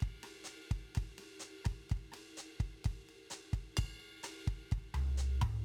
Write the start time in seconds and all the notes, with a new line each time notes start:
0.01 kick, ride
0.08 kick
0.24 cross-stick, ride
0.45 hi-hat pedal, ride
0.71 kick, ride
0.96 kick, cross-stick, ride
1.03 kick
1.19 snare, ride
1.40 hi-hat pedal, ride
1.65 kick, cross-stick, snare, ride
1.72 kick
1.90 kick, ride
1.97 kick
2.12 cross-stick, ride
2.38 hi-hat pedal, ride
2.61 kick, ride
2.85 kick, snare, ride
2.91 kick
3.09 ride
3.31 cross-stick, hi-hat pedal, ride
3.54 kick, ride
3.77 kick, ride bell
3.85 kick
4.00 ride
4.24 cross-stick, hi-hat pedal, ride
4.48 kick, ride
4.72 kick, ride
4.78 kick
4.95 floor tom, ride
5.18 hi-hat pedal, ride
5.42 kick, mid tom, ride
5.49 kick